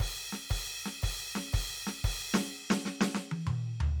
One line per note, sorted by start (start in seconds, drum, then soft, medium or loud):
0.00 kick medium
0.00 crash loud
0.33 snare medium
0.49 kick medium
0.49 crash loud
0.86 snare medium
1.02 kick medium
1.02 crash loud
1.35 snare medium
1.52 kick medium
1.52 crash loud
1.87 snare medium
2.04 kick medium
2.04 crash loud
2.34 snare loud
2.70 snare loud
2.85 snare medium
3.01 snare loud
3.15 snare medium
3.31 high tom loud
3.47 mid tom loud
3.80 floor tom loud